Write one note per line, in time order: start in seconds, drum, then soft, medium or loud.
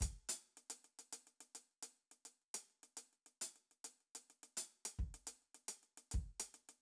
0.00 kick soft
0.00 closed hi-hat loud
0.00 hi-hat pedal soft
0.29 closed hi-hat loud
0.41 closed hi-hat soft
0.57 closed hi-hat soft
0.70 closed hi-hat medium
0.84 closed hi-hat soft
0.99 closed hi-hat medium
1.12 closed hi-hat medium
1.27 closed hi-hat soft
1.40 closed hi-hat soft
1.55 closed hi-hat medium
1.71 closed hi-hat soft
1.82 closed hi-hat medium
1.97 closed hi-hat soft
2.11 closed hi-hat soft
2.25 closed hi-hat medium
2.41 closed hi-hat soft
2.54 closed hi-hat loud
2.70 closed hi-hat soft
2.83 closed hi-hat soft
2.97 closed hi-hat medium
3.13 closed hi-hat soft
3.26 closed hi-hat soft
3.41 closed hi-hat medium
3.56 closed hi-hat soft
3.71 closed hi-hat soft
3.84 closed hi-hat medium
4.00 closed hi-hat soft
4.15 closed hi-hat medium
4.30 closed hi-hat soft
4.43 closed hi-hat soft
4.57 closed hi-hat loud
4.72 closed hi-hat soft
4.85 closed hi-hat loud
4.98 kick soft
5.14 closed hi-hat soft
5.27 closed hi-hat medium
5.42 closed hi-hat soft
5.54 closed hi-hat soft
5.68 closed hi-hat medium
5.83 closed hi-hat soft
5.97 closed hi-hat soft
6.11 kick soft
6.11 closed hi-hat medium
6.40 closed hi-hat loud
6.54 closed hi-hat soft
6.69 closed hi-hat soft